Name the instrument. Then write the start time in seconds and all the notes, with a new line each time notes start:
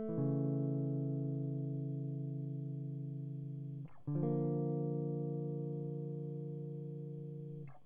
electric guitar
0.00 A3
0.10 E3
0.20 C#3
4.09 D3
4.17 F3
4.24 A#3
7.40 A4
7.46 A#3